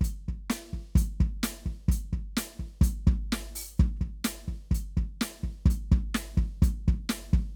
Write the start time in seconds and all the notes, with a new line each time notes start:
0.01 closed hi-hat, kick
0.28 kick
0.50 closed hi-hat, snare
0.73 kick
0.95 closed hi-hat, kick
1.20 kick
1.43 closed hi-hat, snare
1.51 snare
1.66 kick
1.88 closed hi-hat, kick
2.13 kick
2.37 closed hi-hat, snare
2.59 kick
2.81 closed hi-hat, kick
3.07 kick
3.32 snare
3.40 snare
3.55 open hi-hat
3.77 kick, hi-hat pedal
3.96 snare
4.01 kick
4.24 closed hi-hat, snare
4.48 kick
4.71 closed hi-hat, kick
4.97 kick
5.21 closed hi-hat, snare
5.30 snare
5.38 cross-stick
5.43 kick
5.66 kick
5.70 closed hi-hat
5.92 kick
6.14 closed hi-hat, snare
6.37 kick
6.62 closed hi-hat, kick
6.88 kick
7.09 closed hi-hat, snare
7.17 snare
7.33 kick